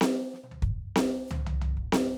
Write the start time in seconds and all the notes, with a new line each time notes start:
0.01 snare
0.33 snare
0.43 high tom
0.51 floor tom
0.62 kick
0.96 snare
1.27 floor tom, hi-hat pedal
1.46 floor tom
1.61 floor tom
1.77 kick
1.92 snare